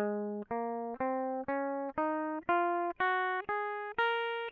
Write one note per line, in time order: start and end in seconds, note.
0.00 0.47 G#3
0.52 0.99 A#3
1.01 1.47 C4
1.49 1.93 C#4
1.98 2.42 D#4
2.49 2.93 F4
3.01 3.47 F#4
3.49 3.95 G#4
3.99 4.51 A#4